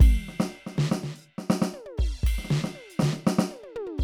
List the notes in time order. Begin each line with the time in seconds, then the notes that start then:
0.01 kick, ride
0.29 snare
0.41 snare
0.67 snare
0.76 snare
0.79 snare
0.92 snare
1.04 snare
1.16 open hi-hat
1.39 snare
1.51 snare
1.62 snare
1.74 high tom
1.86 high tom
1.98 kick, crash
2.24 kick, ride
2.39 snare
2.45 snare
2.51 snare
2.65 snare
2.75 high tom
2.91 hi-hat pedal
3.00 snare
3.03 snare
3.14 snare
3.27 snare
3.39 snare
3.51 high tom
3.64 high tom
3.76 mid tom
3.87 mid tom
3.99 kick, crash